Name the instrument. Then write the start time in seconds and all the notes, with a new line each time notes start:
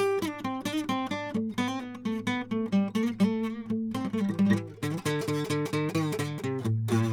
acoustic guitar
0.00 G4
0.23 D4
0.46 C4
0.67 D#4
0.90 C4
1.12 D4
1.36 A3
1.59 B3
1.69 C4
1.81 B3
2.06 A3
2.28 B3
2.52 A3
2.74 G3
2.96 A#3
3.21 A3
3.71 A3
3.96 C4
4.15 A3
4.26 G3
4.30 E3
4.40 G3
4.48 E3 G3
4.84 D#3
5.07 D3
5.30 D3
5.52 D3
5.75 D#3
5.96 D#3
6.05 D3
6.21 D3
6.45 C3
6.67 A2
6.98 A2